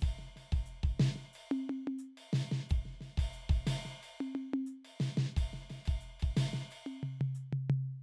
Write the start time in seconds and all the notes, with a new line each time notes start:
0.01 kick, hi-hat pedal, ride
0.19 snare
0.36 snare, ride
0.53 kick, ride
0.66 hi-hat pedal
0.84 kick, ride
1.00 snare, ride
1.16 snare
1.33 hi-hat pedal, ride
1.52 high tom
1.70 high tom
1.88 high tom
1.99 hi-hat pedal
2.18 ride
2.33 snare, ride
2.52 snare
2.70 kick, hi-hat pedal, ride
2.86 snare
3.01 snare, ride
3.18 kick, ride
3.33 hi-hat pedal
3.50 kick, ride
3.67 snare, ride
3.85 snare
4.03 hi-hat pedal, ride
4.21 high tom
4.35 high tom
4.54 high tom
4.67 hi-hat pedal
4.85 ride
5.00 snare, ride
5.18 snare
5.37 kick, hi-hat pedal, ride
5.54 snare
5.70 snare, ride
5.86 kick, ride
6.01 hi-hat pedal
6.20 kick, ride
6.37 snare, ride
6.54 snare
6.71 hi-hat pedal, ride
6.87 high tom
7.03 floor tom
7.21 floor tom
7.35 hi-hat pedal
7.53 floor tom
7.70 floor tom